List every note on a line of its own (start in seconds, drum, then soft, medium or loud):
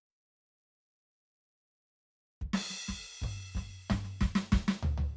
2.41 kick medium
2.53 snare loud
2.53 crash loud
2.70 snare soft
2.88 kick soft
2.88 snare medium
3.22 kick medium
3.22 mid tom medium
3.55 kick medium
3.55 snare medium
3.55 mid tom medium
3.90 kick medium
3.90 snare loud
3.90 mid tom loud
4.04 snare soft
4.21 kick medium
4.21 snare loud
4.35 snare loud
4.52 kick loud
4.52 snare loud
4.68 snare loud
4.80 kick soft
4.80 floor tom loud
4.98 floor tom loud